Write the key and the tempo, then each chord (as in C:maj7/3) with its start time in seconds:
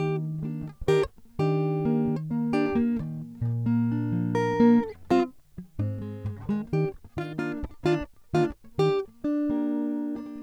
D# major, 129 BPM
0.00 D#:maj7
2.98 A#:maj
4.84 G#:maj6(2,b5,*5)
6.71 D#:maj7